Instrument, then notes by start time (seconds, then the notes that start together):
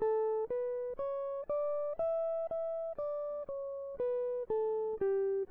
electric guitar
0.02 A4
0.51 B4
0.99 C#5
1.50 D5
1.99 E5
2.49 E5
2.99 D5
3.49 C#5
4.00 B4
4.51 A4
5.02 G4